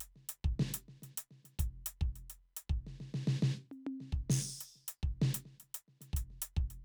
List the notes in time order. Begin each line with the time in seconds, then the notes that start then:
0.01 closed hi-hat
0.16 snare
0.29 closed hi-hat
0.45 kick
0.60 snare
0.62 snare
0.74 closed hi-hat
0.89 snare
1.03 snare, closed hi-hat
1.18 closed hi-hat
1.31 snare
1.45 snare, closed hi-hat
1.59 closed hi-hat, kick
1.86 closed hi-hat
2.01 kick
2.16 closed hi-hat
2.30 closed hi-hat
2.57 closed hi-hat
2.70 kick
2.87 snare
3.01 snare
3.15 snare
3.28 snare
3.43 snare
3.56 snare
3.72 closed hi-hat, high tom
3.87 high tom
4.01 snare
4.13 kick
4.30 snare, crash
4.46 snare
4.49 snare
4.61 closed hi-hat
4.76 snare
4.88 closed hi-hat
5.03 kick
5.22 snare
5.25 snare
5.35 closed hi-hat
5.46 snare
5.60 snare, closed hi-hat
5.75 closed hi-hat
5.88 snare
6.01 snare, closed hi-hat
6.14 closed hi-hat, kick
6.31 snare
6.42 closed hi-hat
6.57 kick
6.71 closed hi-hat